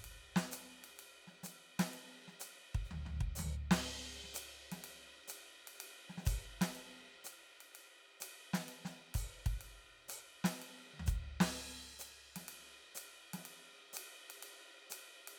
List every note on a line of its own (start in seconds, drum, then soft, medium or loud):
0.01 hi-hat pedal soft
0.01 ride medium
0.36 snare medium
0.52 hi-hat pedal medium
0.52 ride medium
0.84 ride medium
0.96 hi-hat pedal soft
0.96 ride medium
1.28 snare soft
1.43 snare soft
1.43 hi-hat pedal medium
1.43 ride medium
1.79 snare medium
1.79 ride loud
1.90 hi-hat pedal soft
1.90 ride medium
2.28 snare soft
2.40 hi-hat pedal medium
2.40 ride medium
2.75 kick soft
2.85 hi-hat pedal soft
2.91 floor tom medium
2.91 high tom soft
3.06 floor tom medium
3.06 high tom soft
3.21 kick soft
3.36 floor tom medium
3.36 hi-hat pedal loud
3.36 high tom soft
3.71 snare loud
3.71 ride loud
3.81 hi-hat pedal soft
4.24 snare soft
4.34 hi-hat pedal loud
4.34 ride medium
4.72 snare soft
4.72 ride medium
4.80 hi-hat pedal soft
4.84 ride medium
5.28 hi-hat pedal medium
5.28 ride medium
5.68 ride medium
5.75 hi-hat pedal soft
5.80 ride medium
6.10 snare soft
6.18 snare soft
6.26 kick soft
6.26 hi-hat pedal medium
6.26 ride medium
6.61 snare medium
6.61 ride loud
6.73 hi-hat pedal soft
6.73 ride soft
7.25 hi-hat pedal medium
7.25 ride medium
7.61 ride medium
7.74 hi-hat pedal soft
7.74 ride medium
8.21 hi-hat pedal medium
8.21 ride loud
8.54 snare medium
8.54 ride medium
8.68 hi-hat pedal soft
8.68 ride medium
8.85 snare soft
9.15 kick soft
9.15 hi-hat pedal medium
9.15 ride medium
9.46 kick soft
9.46 ride medium
9.61 hi-hat pedal soft
9.61 ride medium
10.09 hi-hat pedal medium
10.09 ride medium
10.45 snare medium
10.45 ride loud
10.56 hi-hat pedal soft
10.62 ride medium
10.94 high tom soft
11.00 floor tom medium
11.07 kick soft
11.07 hi-hat pedal medium
11.41 snare medium
11.41 crash medium
11.51 hi-hat pedal soft
11.86 snare soft
11.99 hi-hat pedal medium
11.99 ride medium
12.36 snare soft
12.36 ride medium
12.48 hi-hat pedal soft
12.48 ride medium
12.95 hi-hat pedal medium
12.95 ride medium
13.34 snare soft
13.34 ride medium
13.46 ride medium
13.93 hi-hat pedal loud
13.93 ride loud
14.15 hi-hat pedal soft
14.30 ride medium
14.41 hi-hat pedal soft
14.41 ride medium
14.90 hi-hat pedal medium
14.90 ride medium
15.28 ride medium
15.35 hi-hat pedal soft